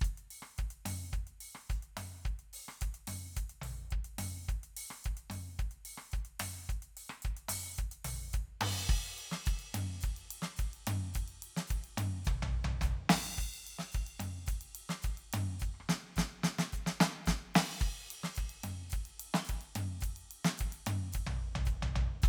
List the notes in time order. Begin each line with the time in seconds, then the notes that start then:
0.01 kick, hi-hat pedal
0.05 closed hi-hat
0.18 closed hi-hat
0.31 open hi-hat
0.43 cross-stick
0.57 kick, closed hi-hat, hi-hat pedal
0.71 closed hi-hat
0.86 open hi-hat, high tom
1.12 kick, closed hi-hat, hi-hat pedal
1.27 closed hi-hat
1.41 open hi-hat
1.55 cross-stick
1.68 closed hi-hat, kick, hi-hat pedal
1.83 closed hi-hat
1.97 open hi-hat, high tom
2.24 kick, closed hi-hat, hi-hat pedal
2.40 closed hi-hat
2.54 open hi-hat
2.69 cross-stick
2.79 kick, closed hi-hat, hi-hat pedal
2.95 closed hi-hat
3.08 open hi-hat, high tom
3.36 kick, closed hi-hat, hi-hat pedal
3.50 closed hi-hat
3.62 floor tom, open hi-hat
3.91 kick, hi-hat pedal, open hi-hat
4.05 closed hi-hat
4.19 open hi-hat, high tom
4.47 kick, closed hi-hat, hi-hat pedal
4.64 closed hi-hat
4.77 open hi-hat
4.91 cross-stick
5.03 kick, closed hi-hat, hi-hat pedal
5.17 closed hi-hat
5.30 open hi-hat, high tom
5.58 kick, closed hi-hat, hi-hat pedal
5.72 closed hi-hat
5.86 open hi-hat
5.98 cross-stick
6.12 kick, hi-hat pedal, open hi-hat
6.25 closed hi-hat
6.40 open hi-hat, high tom
6.69 kick, closed hi-hat, hi-hat pedal
6.83 closed hi-hat
6.97 open hi-hat
7.10 cross-stick
7.23 kick, hi-hat pedal, open hi-hat
7.37 closed hi-hat
7.49 open hi-hat, high tom
7.76 kick, closed hi-hat, hi-hat pedal
7.92 closed hi-hat
8.05 floor tom, open hi-hat
8.32 kick, closed hi-hat, hi-hat pedal
8.61 high tom, crash
8.89 kick, hi-hat pedal, ride
9.05 ride
9.19 ride
9.32 snare
9.46 kick, hi-hat pedal, ride
9.60 ride
9.75 high tom, ride
10.01 kick, hi-hat pedal, ride
10.17 ride
10.31 ride
10.43 snare
10.57 kick, hi-hat pedal, ride
10.74 ride
10.88 kick, high tom, ride
11.14 kick, hi-hat pedal, ride
11.28 ride
11.43 ride
11.57 snare
11.68 kick, hi-hat pedal, ride
11.84 ride
11.98 high tom, ride
12.25 kick, floor tom, hi-hat pedal
12.43 floor tom
12.55 kick
12.65 floor tom
12.82 kick, floor tom, hi-hat pedal
13.10 snare, crash
13.38 kick, hi-hat pedal
13.42 ride
13.54 ride
13.67 ride
13.72 kick
13.79 snare
13.92 kick, hi-hat pedal, ride
14.07 ride
14.20 high tom, ride
14.47 kick, hi-hat pedal, ride
14.62 ride
14.75 ride
14.81 kick
14.90 snare
15.03 kick, hi-hat pedal, ride
15.18 ride
15.33 kick, high tom, ride
15.60 kick, hi-hat pedal
15.75 cross-stick
15.81 cross-stick
15.89 snare
16.16 kick, snare, hi-hat pedal
16.44 snare
16.59 snare
16.73 kick, hi-hat pedal
16.87 snare
17.01 snare
17.26 kick, snare, hi-hat pedal
17.55 kick, snare, crash
17.80 kick, hi-hat pedal
17.86 ride
18.11 ride
18.24 snare
18.35 kick, hi-hat pedal, ride
18.50 ride
18.64 high tom, ride
18.70 kick
18.90 kick, hi-hat pedal, ride
19.06 ride
19.20 ride
19.26 kick
19.35 snare
19.45 hi-hat pedal
19.50 kick, ride
19.61 ride
19.76 kick, high tom, ride
20.01 kick, hi-hat pedal, ride
20.17 ride
20.31 ride
20.45 snare
20.58 kick, hi-hat pedal, ride
20.73 ride
20.87 kick, high tom, ride
21.13 kick, hi-hat pedal, ride
21.27 floor tom
21.56 floor tom
21.66 kick, hi-hat pedal
21.83 floor tom
21.96 floor tom
22.22 kick, hi-hat pedal, ride